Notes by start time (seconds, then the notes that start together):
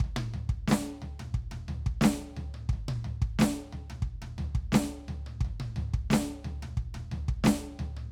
0.00 kick, floor tom
0.16 high tom
0.34 floor tom
0.49 kick
0.68 snare
0.71 snare
1.02 floor tom
1.19 mid tom
1.34 kick
1.51 mid tom
1.68 floor tom
1.86 kick
2.01 snare
2.04 snare
2.37 floor tom
2.54 high tom
2.69 kick, floor tom
2.88 high tom
3.04 floor tom
3.22 kick
3.39 snare
3.41 snare
3.73 floor tom
3.90 mid tom
4.02 kick
4.22 mid tom
4.38 floor tom
4.55 kick
4.72 snare
4.74 snare
5.08 floor tom
5.26 high tom
5.41 kick
5.45 floor tom
5.60 high tom
5.76 floor tom
5.94 kick
6.10 snare
6.13 snare
6.44 floor tom
6.62 mid tom
6.77 kick
6.94 mid tom
7.12 floor tom
7.28 kick
7.44 snare
7.46 snare
7.79 floor tom
7.97 high tom